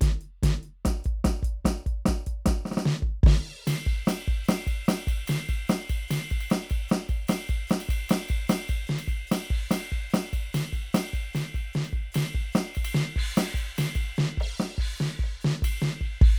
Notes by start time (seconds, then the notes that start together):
0.01 closed hi-hat, kick, snare
0.21 closed hi-hat
0.43 closed hi-hat, kick, snare
0.63 closed hi-hat
0.85 closed hi-hat, kick, snare
1.04 closed hi-hat, kick
1.24 closed hi-hat, kick, snare
1.43 closed hi-hat, kick
1.65 closed hi-hat, kick, snare
1.86 closed hi-hat, kick
2.06 closed hi-hat, kick, snare
2.26 closed hi-hat, kick
2.46 closed hi-hat, kick, snare
2.60 kick
2.65 snare
2.72 snare
2.77 snare
2.86 snare
3.02 kick
3.23 kick, snare, crash
3.66 snare, hi-hat pedal, ride
3.86 kick, ride
4.05 snare, hi-hat pedal, ride
4.28 kick, ride
4.44 hi-hat pedal
4.48 snare, ride
4.67 kick, ride
4.85 snare, hi-hat pedal, ride
5.07 kick, ride
5.26 snare, hi-hat pedal, ride
5.49 kick, ride
5.67 snare, hi-hat pedal, ride
5.89 kick, ride
6.08 snare, hi-hat pedal, ride
6.30 kick, ride bell
6.41 ride
6.50 snare, hi-hat pedal, ride bell
6.70 kick, ride bell
6.88 snare, hi-hat pedal, ride bell
7.09 kick, ride bell
7.27 snare, hi-hat pedal, ride bell
7.49 kick, ride bell
7.67 snare, hi-hat pedal, ride bell
7.80 ride
7.89 kick
8.08 snare, hi-hat pedal, ride bell
8.29 kick, ride bell
8.47 snare, hi-hat pedal, ride bell
8.69 kick, ride bell
8.87 snare, hi-hat pedal
8.99 ride bell
9.08 kick, ride bell
9.27 hi-hat pedal
9.32 snare, ride bell
9.50 kick, crash
9.69 snare, hi-hat pedal, ride
9.92 kick
10.10 snare, hi-hat pedal
10.14 ride
10.33 kick, ride
10.53 snare, hi-hat pedal, ride
10.73 kick, ride
10.93 snare, hi-hat pedal, ride
11.13 kick, ride bell
11.33 snare, hi-hat pedal, ride bell
11.54 kick, ride bell
11.73 snare, hi-hat pedal
11.84 ride bell
11.93 kick
12.12 snare, hi-hat pedal, ride bell
12.35 kick
12.53 snare, hi-hat pedal, ride bell
12.75 kick, ride
12.85 ride
12.95 snare, hi-hat pedal
13.16 kick, crash
13.34 snare, hi-hat pedal, ride
13.54 kick, ride
13.75 snare, hi-hat pedal, ride
13.95 kick, ride
14.16 snare, hi-hat pedal
14.37 kick, crash
14.58 snare, hi-hat pedal
14.78 kick, crash
14.96 hi-hat pedal
15.00 snare
15.19 kick, crash
15.41 snare, hi-hat pedal
15.62 kick, ride
15.80 snare, hi-hat pedal
16.01 kick, crash
16.21 kick, crash